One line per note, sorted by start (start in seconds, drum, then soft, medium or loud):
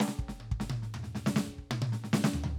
0.01 snare loud
0.08 snare medium
0.19 kick medium
0.29 snare medium
0.40 high tom medium
0.52 kick medium
0.60 snare medium
0.70 closed hi-hat soft
0.70 high tom loud
0.83 kick soft
0.83 snare soft
0.94 mid tom medium
1.03 snare soft
1.15 snare medium
1.27 snare loud
1.36 snare loud
1.49 kick soft
1.59 kick soft
1.71 high tom loud
1.82 high tom loud
1.93 snare medium
2.04 snare medium
2.13 snare loud
2.24 snare loud
2.34 floor tom medium
2.44 floor tom loud